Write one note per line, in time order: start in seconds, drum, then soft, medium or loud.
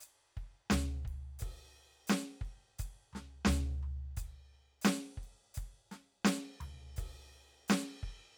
0.01 hi-hat pedal medium
0.01 ride soft
0.37 kick soft
0.37 ride soft
0.71 snare loud
0.71 floor tom medium
0.71 hi-hat pedal medium
1.06 kick soft
1.06 ride soft
1.40 kick soft
1.40 hi-hat pedal medium
1.40 crash soft
2.08 snare loud
2.08 hi-hat pedal medium
2.08 ride medium
2.42 kick soft
2.42 ride soft
2.79 kick soft
2.79 hi-hat pedal medium
2.79 ride soft
3.13 snare soft
3.13 floor tom soft
3.45 snare loud
3.45 floor tom loud
3.50 hi-hat pedal medium
3.83 floor tom soft
4.17 kick soft
4.17 hi-hat pedal medium
4.17 ride soft
4.82 snare loud
4.82 hi-hat pedal medium
4.82 ride medium
5.18 kick soft
5.24 ride soft
5.55 kick soft
5.55 hi-hat pedal medium
5.55 ride soft
5.92 snare soft
5.92 ride soft
6.25 snare loud
6.25 hi-hat pedal medium
6.25 ride soft
6.61 floor tom medium
6.61 ride soft
6.97 kick soft
6.97 hi-hat pedal medium
6.97 crash soft
7.69 snare loud
7.69 hi-hat pedal medium
7.69 ride medium
8.03 kick soft